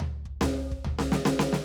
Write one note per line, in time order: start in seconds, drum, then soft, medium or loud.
0.00 floor tom loud
0.25 kick soft
0.41 snare loud
0.41 floor tom loud
0.71 kick medium
0.84 floor tom loud
0.99 snare loud
1.12 snare loud
1.25 snare loud
1.39 snare loud
1.53 snare loud